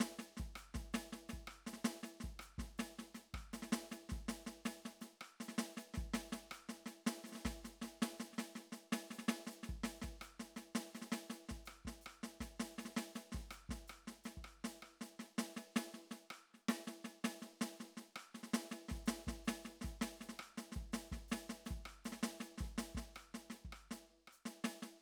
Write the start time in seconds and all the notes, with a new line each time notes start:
0.01 snare
0.19 snare, hi-hat pedal
0.38 kick, snare
0.56 cross-stick, hi-hat pedal
0.75 kick, snare
0.94 snare, hi-hat pedal
1.13 snare
1.30 snare, hi-hat pedal
1.34 kick
1.48 cross-stick
1.67 snare, hi-hat pedal
1.74 snare
1.85 snare
2.04 snare, hi-hat pedal
2.21 kick, snare
2.40 cross-stick, hi-hat pedal
2.59 kick, snare
2.79 snare, hi-hat pedal
2.99 snare
3.15 snare, hi-hat pedal
3.35 kick, cross-stick
3.54 snare, hi-hat pedal
3.63 snare
3.73 snare
3.92 snare, hi-hat pedal
4.10 kick, snare
4.13 snare
4.29 snare, hi-hat pedal
4.47 snare
4.66 snare, hi-hat pedal
4.86 snare
5.02 snare, hi-hat pedal
5.22 cross-stick
5.41 snare, hi-hat pedal
5.49 snare
5.59 snare
5.78 snare, hi-hat pedal
5.95 kick, snare
6.14 snare, hi-hat pedal
6.33 snare
6.52 cross-stick, hi-hat pedal
6.70 snare
6.87 snare, hi-hat pedal
7.07 snare
7.25 snare, hi-hat pedal
7.30 snare
7.33 snare
7.36 snare
7.46 kick, snare
7.65 snare, hi-hat pedal
7.82 snare
7.84 snare
8.03 snare, hi-hat pedal
8.21 snare
8.34 snare
8.39 snare, hi-hat pedal
8.56 snare
8.73 snare, hi-hat pedal
8.93 snare
9.11 snare, hi-hat pedal
9.19 snare
9.29 snare
9.48 snare
9.52 hi-hat pedal
9.64 snare
9.70 kick
9.84 snare, hi-hat pedal
10.02 kick, snare
10.22 cross-stick, hi-hat pedal
10.40 snare
10.57 snare, hi-hat pedal
10.76 snare
10.96 snare, hi-hat pedal
11.02 snare
11.13 snare
11.31 snare, hi-hat pedal
11.50 kick, snare
11.66 cross-stick, hi-hat pedal
11.86 kick, snare
12.02 hi-hat pedal
12.07 cross-stick
12.24 snare
12.41 kick, snare, hi-hat pedal
12.60 snare
12.79 snare, hi-hat pedal
12.86 snare
12.97 snare
13.16 snare, hi-hat pedal
13.33 kick, snare
13.36 snare
13.52 cross-stick, hi-hat pedal
13.70 kick, snare
13.88 cross-stick, hi-hat pedal
14.08 snare
14.25 snare, hi-hat pedal
14.38 kick
14.45 cross-stick
14.65 snare, hi-hat pedal
14.83 cross-stick
15.02 snare, hi-hat pedal
15.20 snare
15.39 snare
15.57 snare
15.77 snare
15.95 snare
16.11 snare, hi-hat pedal
16.31 cross-stick
16.55 snare
16.69 snare
16.88 snare
17.05 snare
17.25 snare
17.43 snare
17.62 snare
17.81 snare
17.98 snare
18.17 cross-stick
18.35 snare
18.44 snare
18.54 snare
18.72 snare
18.89 snare
18.91 kick, snare
19.07 snare, hi-hat pedal
19.28 kick, snare
19.46 snare, hi-hat pedal
19.66 snare
19.82 snare
19.84 kick, snare, hi-hat pedal
20.02 snare
20.21 snare, hi-hat pedal
20.30 snare
20.40 cross-stick
20.58 snare, hi-hat pedal
20.73 snare
20.77 kick
20.93 snare, hi-hat pedal
21.12 kick, snare
21.29 snare, hi-hat pedal
21.50 snare
21.66 snare, hi-hat pedal
21.72 kick
21.86 cross-stick
22.05 snare, hi-hat pedal
22.13 snare
22.24 snare
22.41 snare, hi-hat pedal
22.59 snare
22.60 kick, snare
22.79 snare, hi-hat pedal
22.96 kick, snare
23.16 cross-stick, hi-hat pedal
23.35 snare
23.51 snare, hi-hat pedal
23.66 kick
23.73 cross-stick
23.92 snare, hi-hat pedal
24.28 cross-stick
24.33 hi-hat pedal
24.46 snare
24.65 snare, hi-hat pedal
24.83 snare